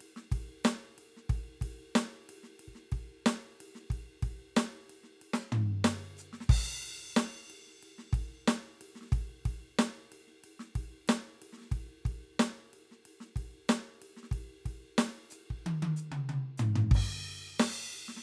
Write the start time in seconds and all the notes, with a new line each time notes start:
0.01 ride
0.17 snare
0.32 kick, ride
0.65 snare, ride
0.85 snare
0.98 ride
1.17 snare
1.30 kick, ride
1.62 kick, ride
1.96 snare, ride
2.12 snare
2.29 ride
2.44 snare
2.60 ride
2.68 kick
2.75 snare
2.92 kick, ride
3.26 snare, ride
3.61 ride
3.75 snare
3.90 kick, ride
4.23 kick, ride
4.57 snare, ride
4.90 ride
5.04 snare
5.22 ride
5.34 snare
5.52 floor tom
5.85 snare, ride
6.17 hi-hat pedal, ride bell
6.33 snare
6.41 snare
6.50 kick, crash
6.83 ride
7.17 snare, ride
7.33 snare
7.50 ride
7.67 snare
7.83 ride
7.99 snare
8.13 kick, ride
8.48 snare, ride
8.81 ride
8.96 snare
9.01 snare
9.05 snare
9.12 kick, ride
9.46 kick, ride
9.79 snare, ride
9.92 snare
9.99 snare
10.12 ride
10.27 snare
10.44 ride
10.60 snare
10.76 kick, ride
11.08 snare, ride
11.42 ride
11.53 snare
11.58 snare
11.61 snare
11.65 snare
11.69 kick, snare, ride
12.06 kick, ride
12.40 snare, ride
12.60 snare
12.74 ride
12.92 snare
13.06 ride
13.21 snare
13.36 kick, ride
13.59 kick
13.69 snare, ride
14.02 ride
14.17 snare
14.23 snare
14.32 kick, ride
14.66 kick, ride
14.98 snare, ride
15.08 snare
15.31 hi-hat pedal, ride
15.51 kick
15.66 high tom
15.83 high tom
15.97 hi-hat pedal
16.12 mid tom
16.29 mid tom
16.58 floor tom, hi-hat pedal
16.76 floor tom
16.91 kick, crash
17.26 kick, ride
17.59 snare, crash
17.68 cross-stick
17.75 cross-stick
17.81 snare
17.93 ride
18.09 snare
18.17 snare